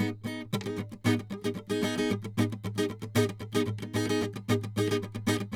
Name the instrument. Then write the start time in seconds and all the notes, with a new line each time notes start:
acoustic guitar
0.01 B3 D#4 G#4
0.25 B3 D#4 G#4
0.55 D#4
0.65 B3 G#4
1.07 B3 D#4
1.71 B3 D#4 G#4
1.83 B3 D#4 G#4
1.99 B3 D#4 G#4
2.12 B3
2.39 B3 D#4 G#4
2.79 B3 D#4 G#4
3.16 B3 D#4 G#4
3.56 B3 D#4 G#4
3.85 B3
3.95 B3 D#4 G#4
4.11 B3 D#4 G#4
4.50 B3 D#4 G4
4.77 B3 D#4 G#4
4.92 B3 D#4 G#4
5.28 B3 D#4 G#4